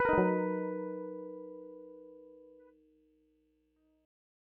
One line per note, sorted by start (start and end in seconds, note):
0.00 2.74 B4
0.05 4.22 D#4
0.05 3.61 A#4
0.19 2.53 F#3